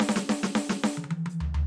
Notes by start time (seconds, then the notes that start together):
0.03 snare, hi-hat pedal
0.09 snare
0.16 snare
0.29 snare
0.41 snare, hi-hat pedal
0.55 snare
0.69 snare
0.84 snare, hi-hat pedal
0.97 high tom
1.04 high tom
1.11 high tom
1.26 hi-hat pedal, high tom
1.40 floor tom
1.54 floor tom